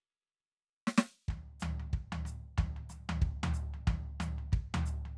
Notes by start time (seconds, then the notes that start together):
0.87 snare
0.98 snare
1.28 kick, floor tom
1.60 floor tom, hi-hat pedal
1.80 floor tom
1.93 kick, floor tom
2.12 floor tom
2.25 floor tom, hi-hat pedal
2.58 kick, floor tom
2.76 floor tom
2.89 floor tom, hi-hat pedal
3.09 floor tom
3.22 kick
3.43 floor tom
3.54 hi-hat pedal
3.74 floor tom
3.87 kick, floor tom
4.20 floor tom, hi-hat pedal
4.38 floor tom
4.52 kick, floor tom
4.74 floor tom
4.86 floor tom, hi-hat pedal
5.05 floor tom